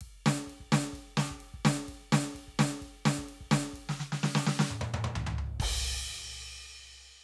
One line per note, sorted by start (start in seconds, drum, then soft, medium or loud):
0.02 kick soft
0.02 ride medium
0.26 snare loud
0.26 ride medium
0.47 kick soft
0.47 ride medium
0.60 kick soft
0.72 snare loud
0.72 ride medium
0.93 kick soft
0.93 ride soft
1.17 snare loud
1.17 ride medium
1.31 kick soft
1.40 ride medium
1.54 kick soft
1.65 snare loud
1.65 ride medium
1.88 kick soft
1.88 ride medium
2.12 snare loud
2.12 ride medium
2.35 kick soft
2.35 ride medium
2.48 kick soft
2.59 snare loud
2.59 ride medium
2.81 kick soft
2.81 ride soft
3.05 snare loud
3.05 ride medium
3.18 kick soft
3.29 ride medium
3.40 kick soft
3.51 snare loud
3.51 ride medium
3.66 snare soft
3.73 kick soft
3.73 ride medium
3.89 snare medium
3.99 snare medium
4.12 snare medium
4.23 snare loud
4.35 snare loud
4.46 snare loud
4.59 snare loud
4.70 high tom medium
4.81 high tom loud
4.94 high tom loud
5.04 high tom loud
5.15 floor tom loud
5.26 floor tom loud
5.38 floor tom medium
5.47 kick soft
5.60 kick loud
5.60 crash loud